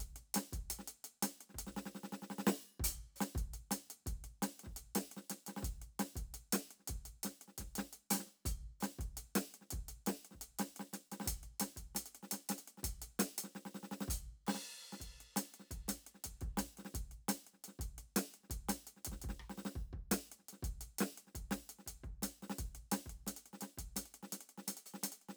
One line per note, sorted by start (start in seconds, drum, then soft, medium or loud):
0.01 closed hi-hat medium
0.17 closed hi-hat soft
0.35 snare medium
0.35 closed hi-hat loud
0.53 kick soft
0.53 closed hi-hat medium
0.71 closed hi-hat loud
0.79 snare soft
0.88 closed hi-hat medium
1.05 closed hi-hat medium
1.23 snare medium
1.23 closed hi-hat loud
1.41 closed hi-hat soft
1.50 snare soft
1.55 kick soft
1.59 closed hi-hat medium
1.67 snare soft
1.77 snare medium
1.86 snare soft
1.95 snare soft
2.04 snare soft
2.13 snare soft
2.23 snare soft
2.31 snare soft
2.39 snare medium
2.47 snare loud
2.80 kick medium
2.85 open hi-hat loud
3.17 hi-hat pedal soft
3.21 snare medium
3.21 closed hi-hat medium
3.36 kick medium
3.36 closed hi-hat medium
3.54 closed hi-hat medium
3.72 snare medium
3.72 closed hi-hat loud
3.91 closed hi-hat medium
4.07 kick soft
4.07 closed hi-hat medium
4.25 closed hi-hat soft
4.43 snare medium
4.43 closed hi-hat medium
4.60 snare soft
4.60 closed hi-hat soft
4.67 kick soft
4.77 closed hi-hat medium
4.96 snare medium
4.96 closed hi-hat loud
5.12 closed hi-hat soft
5.17 snare soft
5.30 snare soft
5.30 closed hi-hat medium
5.47 snare soft
5.47 closed hi-hat medium
5.57 snare soft
5.61 kick medium
5.61 snare soft
5.65 closed hi-hat medium
5.82 closed hi-hat soft
6.00 snare medium
6.00 closed hi-hat medium
6.16 kick soft
6.16 closed hi-hat medium
6.35 closed hi-hat medium
6.53 snare medium
6.53 closed hi-hat loud
6.71 closed hi-hat soft
6.80 snare soft
6.88 kick soft
6.88 closed hi-hat medium
7.06 closed hi-hat medium
7.24 snare medium
7.24 closed hi-hat medium
7.42 closed hi-hat soft
7.48 snare soft
7.59 kick soft
7.59 snare soft
7.59 closed hi-hat medium
7.76 snare medium
7.76 closed hi-hat medium
7.94 closed hi-hat medium
8.11 closed hi-hat loud
8.11 snare medium
8.15 snare medium
8.20 snare soft
8.27 snare soft
8.46 open hi-hat medium
8.46 kick medium
8.81 snare medium
8.81 closed hi-hat medium
8.81 hi-hat pedal medium
8.99 kick soft
8.99 closed hi-hat soft
9.18 closed hi-hat medium
9.36 snare medium
9.36 closed hi-hat loud
9.55 closed hi-hat soft
9.62 snare soft
9.71 kick soft
9.71 closed hi-hat medium
9.89 closed hi-hat medium
10.07 snare medium
10.07 closed hi-hat medium
10.25 closed hi-hat soft
10.32 kick soft
10.32 snare soft
10.42 closed hi-hat medium
10.59 snare medium
10.59 closed hi-hat medium
10.77 snare soft
10.77 closed hi-hat soft
10.94 snare soft
10.94 closed hi-hat medium
11.12 snare soft
11.12 closed hi-hat medium
11.21 snare soft
11.24 kick soft
11.24 snare soft
11.28 closed hi-hat loud
11.44 closed hi-hat soft
11.61 snare medium
11.61 closed hi-hat loud
11.77 kick soft
11.77 closed hi-hat medium
11.96 snare soft
11.96 closed hi-hat loud
12.06 closed hi-hat medium
12.15 closed hi-hat soft
12.23 snare soft
12.32 snare soft
12.32 closed hi-hat loud
12.50 snare medium
12.50 closed hi-hat medium
12.59 closed hi-hat medium
12.68 closed hi-hat soft
12.78 snare soft
12.84 kick soft
12.84 closed hi-hat loud
13.02 closed hi-hat medium
13.20 snare medium
13.20 closed hi-hat loud
13.39 closed hi-hat loud
13.44 snare soft
13.56 snare soft
13.66 snare soft
13.75 snare soft
13.84 snare soft
13.92 snare soft
14.01 snare medium
14.09 open hi-hat medium
14.09 kick medium
14.47 snare medium
14.47 crash medium
14.55 snare soft
14.93 snare soft
15.01 kick soft
15.01 closed hi-hat medium
15.21 closed hi-hat soft
15.37 snare medium
15.37 closed hi-hat loud
15.55 closed hi-hat soft
15.60 snare soft
15.71 kick soft
15.71 closed hi-hat medium
15.89 snare medium
15.89 closed hi-hat loud
16.07 closed hi-hat soft
16.15 snare soft
16.25 kick soft
16.25 closed hi-hat medium
16.42 kick soft
16.42 closed hi-hat soft
16.58 snare medium
16.58 closed hi-hat medium
16.78 snare soft
16.78 closed hi-hat soft
16.86 snare soft
16.95 kick soft
16.95 closed hi-hat medium
17.12 closed hi-hat soft
17.29 snare medium
17.29 closed hi-hat loud
17.47 closed hi-hat soft
17.54 snare soft
17.65 snare soft
17.65 closed hi-hat medium
17.80 kick soft
17.80 closed hi-hat medium
17.99 closed hi-hat soft
18.17 snare medium
18.17 closed hi-hat loud
18.35 closed hi-hat soft
18.44 snare soft
18.51 kick soft
18.51 closed hi-hat medium
18.69 snare medium
18.69 closed hi-hat loud
18.88 closed hi-hat medium
18.97 snare soft
19.06 kick soft
19.06 closed hi-hat medium
19.12 snare soft
19.22 kick soft
19.22 closed hi-hat medium
19.30 snare soft
19.40 cross-stick soft
19.50 snare soft
19.58 snare soft
19.66 snare medium
19.76 kick soft
19.94 kick soft
20.12 snare medium
20.12 closed hi-hat loud
20.32 closed hi-hat soft
20.40 snare soft
20.49 closed hi-hat medium
20.53 snare soft
20.63 kick medium
20.63 closed hi-hat medium
20.82 closed hi-hat medium
20.99 snare medium
20.99 closed hi-hat medium
21.18 closed hi-hat soft
21.28 snare soft
21.36 kick soft
21.36 closed hi-hat medium
21.52 snare medium
21.52 closed hi-hat medium
21.70 closed hi-hat medium
21.79 snare soft
21.87 kick soft
21.87 closed hi-hat medium
22.04 kick soft
22.04 closed hi-hat soft
22.23 snare medium
22.23 closed hi-hat loud
22.43 snare soft
22.43 closed hi-hat soft
22.50 snare medium
22.59 kick soft
22.59 closed hi-hat medium
22.76 closed hi-hat soft
22.92 snare medium
22.92 closed hi-hat loud
23.07 kick soft
23.07 closed hi-hat soft
23.27 snare soft
23.27 closed hi-hat medium
23.37 closed hi-hat medium
23.46 closed hi-hat soft
23.54 snare soft
23.62 snare soft
23.62 closed hi-hat medium
23.78 kick soft
23.78 closed hi-hat medium
23.97 snare soft
23.97 closed hi-hat loud
24.06 closed hi-hat soft
24.15 closed hi-hat soft
24.24 snare soft
24.33 snare soft
24.33 closed hi-hat medium
24.41 closed hi-hat soft
24.50 closed hi-hat soft
24.58 snare soft
24.68 snare soft
24.68 closed hi-hat loud
24.78 closed hi-hat medium
24.87 closed hi-hat soft
24.94 snare soft
25.04 snare soft
25.04 closed hi-hat loud
25.13 closed hi-hat medium
25.22 closed hi-hat soft
25.29 snare soft